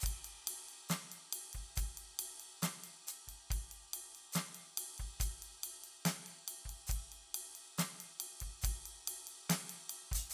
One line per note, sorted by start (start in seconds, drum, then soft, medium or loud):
0.01 kick medium
0.01 hi-hat pedal loud
0.06 ride loud
0.25 ride medium
0.48 ride loud
0.69 ride soft
0.89 snare medium
0.89 hi-hat pedal loud
0.89 ride medium
1.12 ride medium
1.33 ride loud
1.53 kick soft
1.53 ride medium
1.76 kick medium
1.76 hi-hat pedal medium
1.76 ride loud
1.98 ride medium
2.19 ride loud
2.40 ride medium
2.62 snare medium
2.62 hi-hat pedal loud
2.62 ride loud
2.84 ride medium
3.07 hi-hat pedal loud
3.07 ride medium
3.28 kick soft
3.28 ride medium
3.51 kick medium
3.51 hi-hat pedal soft
3.51 ride medium
3.72 ride medium
3.94 ride loud
4.15 ride soft
4.33 snare medium
4.33 hi-hat pedal loud
4.33 ride loud
4.55 ride medium
4.78 ride loud
4.98 kick soft
4.98 ride soft
5.20 kick medium
5.20 hi-hat pedal loud
5.20 ride loud
5.43 ride medium
5.64 ride loud
5.84 ride medium
6.06 snare loud
6.06 hi-hat pedal medium
6.06 ride loud
6.27 ride soft
6.48 ride loud
6.66 kick soft
6.70 ride medium
6.87 kick medium
6.87 hi-hat pedal loud
6.92 ride medium
7.12 ride soft
7.35 ride loud
7.56 ride medium
7.78 snare medium
7.78 hi-hat pedal loud
7.78 ride loud
8.01 ride medium
8.19 hi-hat pedal soft
8.19 ride loud
8.41 kick soft
8.41 ride medium
8.62 kick medium
8.62 hi-hat pedal medium
8.62 ride loud
8.86 ride medium
9.08 ride loud
9.27 ride medium
9.50 snare loud
9.50 hi-hat pedal loud
9.50 ride loud
9.70 ride medium
9.90 ride loud
10.12 open hi-hat medium
10.12 kick medium
10.12 ride medium
10.30 hi-hat pedal loud